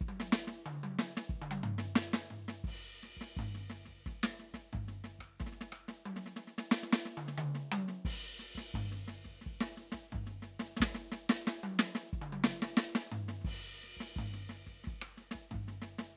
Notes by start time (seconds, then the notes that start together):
0.01 kick
0.09 kick, high tom
0.20 snare
0.32 snare
0.47 snare
0.66 mid tom
0.83 high tom
0.99 snare
1.17 snare
1.29 kick
1.36 kick
1.42 mid tom
1.51 high tom
1.63 floor tom
1.78 snare
1.96 snare
2.13 snare
2.30 floor tom
2.48 snare
2.64 kick, crash
3.01 snare, hi-hat pedal
3.17 kick
3.21 snare
3.37 kick, floor tom
3.55 snare
3.70 snare, hi-hat pedal
3.85 kick, snare
4.06 kick, snare
4.23 snare
4.39 snare, hi-hat pedal
4.54 kick, snare
4.73 kick, floor tom
4.88 snare
5.04 snare, hi-hat pedal
5.19 kick, cross-stick
5.40 kick, snare
5.46 snare
5.52 snare
5.61 snare
5.72 cross-stick
5.88 snare
6.06 high tom
6.16 snare
6.26 snare
6.36 snare
6.47 snare
6.58 snare
6.71 snare
6.83 snare
6.93 snare
7.05 snare
7.17 mid tom
7.28 snare
7.38 mid tom
7.55 snare
7.72 high tom
7.88 snare
8.05 kick, snare, crash
8.14 snare
8.39 snare
8.55 kick, snare
8.74 kick, floor tom
8.92 snare
9.08 snare, hi-hat pedal
9.24 kick, snare
9.41 snare
9.46 kick
9.61 snare
9.76 snare, hi-hat pedal
9.92 kick, snare
10.12 kick, floor tom
10.27 snare
10.42 snare, hi-hat pedal
10.59 snare
10.77 kick, snare
10.82 snare
10.95 snare
11.12 snare
11.29 snare
11.47 snare
11.63 high tom
11.79 snare
11.95 snare
12.13 kick
12.22 kick, mid tom
12.33 high tom
12.44 snare
12.62 snare
12.77 snare
12.95 snare
13.12 floor tom
13.28 snare
13.41 kick, snare
13.46 snare, crash
13.53 snare
13.80 snare, hi-hat pedal
13.97 kick, snare
14.16 kick, floor tom
14.33 snare
14.49 snare, hi-hat pedal
14.66 kick, snare
14.84 kick, snare
15.02 cross-stick
15.17 snare, hi-hat pedal
15.31 kick, snare
15.51 kick, floor tom
15.68 snare
15.82 snare, hi-hat pedal
15.99 snare